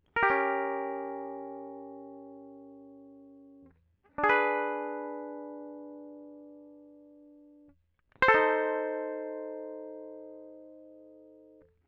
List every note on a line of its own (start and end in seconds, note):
0.17 3.27 A#4
0.24 3.62 G4
0.31 3.74 C#4
4.19 7.74 D4
4.24 6.68 G#4
4.30 7.31 B4
8.16 8.23 D#5
8.23 11.68 C5
8.29 11.46 A4
8.35 11.68 D#4